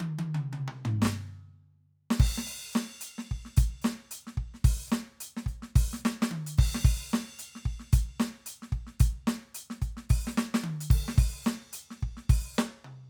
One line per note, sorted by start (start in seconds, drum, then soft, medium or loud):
0.01 high tom loud
0.19 high tom loud
0.35 mid tom loud
0.54 mid tom loud
0.69 mid tom loud
0.86 floor tom loud
1.03 kick soft
1.03 snare loud
1.06 snare loud
2.11 snare loud
2.20 kick loud
2.20 crash loud
2.38 snare medium
2.47 open hi-hat loud
2.73 snare loud
2.73 hi-hat pedal medium
3.02 closed hi-hat loud
3.19 snare medium
3.32 kick medium
3.46 snare soft
3.57 closed hi-hat loud
3.57 kick loud
3.82 snare loud
3.82 hi-hat pedal medium
4.12 closed hi-hat loud
4.28 snare medium
4.38 kick medium
4.55 snare soft
4.65 open hi-hat loud
4.65 kick loud
4.88 hi-hat pedal medium
4.92 snare loud
5.21 closed hi-hat loud
5.37 snare medium
5.47 closed hi-hat soft
5.47 kick medium
5.63 snare medium
5.76 open hi-hat loud
5.76 kick loud
5.94 snare medium
5.98 hi-hat pedal medium
6.06 snare loud
6.23 snare loud
6.32 high tom loud
6.47 closed hi-hat loud
6.59 kick loud
6.59 crash loud
6.75 snare medium
6.85 open hi-hat loud
6.85 kick loud
7.10 snare loud
7.10 hi-hat pedal medium
7.40 closed hi-hat loud
7.56 snare soft
7.66 kick medium
7.66 closed hi-hat soft
7.80 snare soft
7.93 closed hi-hat loud
7.93 kick loud
8.21 snare loud
8.47 closed hi-hat loud
8.63 snare soft
8.73 kick medium
8.73 closed hi-hat soft
8.87 snare soft
9.00 closed hi-hat loud
9.00 kick loud
9.28 snare loud
9.55 closed hi-hat loud
9.71 snare medium
9.82 closed hi-hat medium
9.82 kick medium
9.98 snare medium
10.10 open hi-hat loud
10.10 kick loud
10.28 snare medium
10.28 hi-hat pedal medium
10.38 snare loud
10.55 snare loud
10.64 high tom loud
10.81 closed hi-hat loud
10.91 kick loud
10.91 crash loud
11.09 snare medium
11.19 open hi-hat loud
11.19 kick loud
11.44 snare loud
11.44 hi-hat pedal medium
11.74 closed hi-hat loud
11.91 snare soft
12.01 kick medium
12.01 closed hi-hat soft
12.18 snare soft
12.30 open hi-hat loud
12.30 kick loud
12.55 snare loud
12.55 hi-hat pedal medium
12.85 mid tom medium